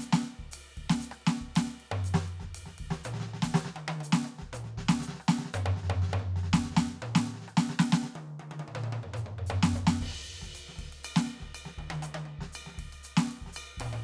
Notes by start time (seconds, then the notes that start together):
0.01 hi-hat pedal, ride
0.13 snare
0.26 ride
0.40 kick
0.52 hi-hat pedal, ride
0.78 kick, ride
0.83 kick
0.90 snare
1.02 hi-hat pedal, ride
1.12 cross-stick
1.22 hi-hat pedal, ride
1.27 snare
1.42 kick
1.56 snare, hi-hat pedal, ride
1.81 ride
1.92 floor tom
2.05 hi-hat pedal, ride
2.15 snare
2.27 hi-hat pedal, ride
2.40 kick, snare
2.55 hi-hat pedal, ride
2.66 snare
2.79 kick, ride
2.87 kick
2.91 snare
3.04 hi-hat pedal, mid tom
3.14 snare
3.21 snare
3.26 snare
3.34 snare
3.43 kick, snare
3.55 snare, hi-hat pedal
3.65 snare
3.77 high tom
3.89 high tom
4.01 hi-hat pedal, high tom
4.13 snare
4.25 hi-hat pedal, high tom
4.39 kick, snare
4.54 hi-hat pedal, mid tom
4.65 snare
4.78 kick, snare
4.89 snare
5.01 snare, hi-hat pedal
5.09 snare
5.14 snare
5.21 cross-stick, hi-hat pedal
5.29 snare
5.39 snare
5.45 snare
5.54 hi-hat pedal, floor tom
5.66 floor tom
5.77 snare
5.84 snare
5.90 floor tom
6.03 snare
6.09 snare
6.14 floor tom
6.20 floor tom
6.36 snare
6.44 snare
6.53 kick, snare
6.59 kick
6.65 snare
6.72 snare
6.77 kick, snare
6.89 snare
6.93 snare
7.03 mid tom
7.16 snare
7.28 snare
7.35 snare
7.40 snare
7.42 snare
7.48 cross-stick
7.53 cross-stick
7.58 snare
7.70 snare
7.80 snare
7.93 snare
8.04 snare
8.16 high tom
8.40 high tom
8.52 high tom
8.60 high tom
8.68 mid tom
8.76 mid tom
8.84 mid tom
8.93 mid tom
9.04 floor tom
9.14 hi-hat pedal, mid tom
9.27 floor tom
9.39 floor tom
9.47 kick, hi-hat pedal, floor tom
9.63 snare
9.74 kick, hi-hat pedal, floor tom
9.87 snare
10.01 kick, ride
10.12 kick, cross-stick
10.14 kick
10.19 snare
10.24 hi-hat pedal
10.42 kick, snare
10.50 kick
10.56 hi-hat pedal, ride bell
10.69 snare
10.77 kick, snare, ride
10.81 snare
10.84 kick, snare
10.93 ride
11.04 hi-hat pedal, ride bell
11.17 snare
11.30 ride
11.40 kick, snare
11.55 hi-hat pedal, ride bell
11.66 snare
11.78 kick, high tom
11.84 kick
11.91 high tom
12.03 hi-hat pedal, high tom
12.15 high tom
12.26 high tom
12.39 kick, snare
12.50 kick, hi-hat pedal
12.56 ride bell
12.67 snare
12.75 kick, snare
12.80 snare, ride
12.84 kick, snare
12.88 snare
12.93 ride bell
13.04 hi-hat pedal, ride bell
13.17 snare
13.32 ride
13.42 kick
13.47 kick, snare
13.53 hi-hat pedal, ride bell
13.78 kick, mid tom, ride
13.93 mid tom